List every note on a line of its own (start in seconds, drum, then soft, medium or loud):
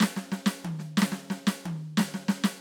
0.00 snare loud
0.03 snare loud
0.17 snare medium
0.32 snare loud
0.46 snare loud
0.65 high tom loud
0.79 snare medium
0.97 snare loud
1.02 snare loud
1.12 snare medium
1.30 snare loud
1.47 snare loud
1.66 high tom loud
1.97 snare loud
2.00 snare loud
2.14 snare medium
2.29 snare loud
2.44 snare loud